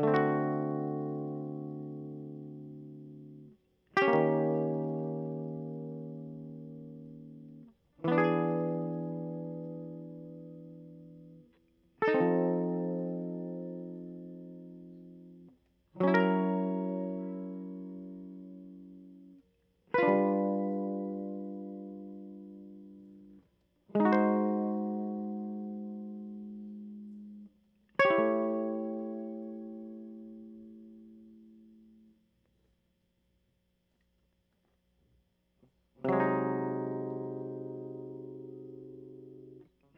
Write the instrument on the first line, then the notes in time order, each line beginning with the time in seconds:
electric guitar
0.00 D3 A3
0.08 C4
0.14 F#4
3.97 G4
4.02 C#4
4.08 A#3
4.14 D#3
8.05 E3 B3
8.12 D4
8.18 G#4
12.02 A4
12.08 D#4
12.14 C4
12.21 F3
16.01 F#3 C#4
16.07 E4
16.14 A#4
19.94 F4 B4
20.03 D4
20.08 G3
23.96 G#3
24.00 D#4
24.05 F#4
24.12 C5
27.99 C#5
28.05 G4
28.10 E4
28.19 A3
35.64 B2
36.05 C3 F#3
36.13 G#3
36.20 D#4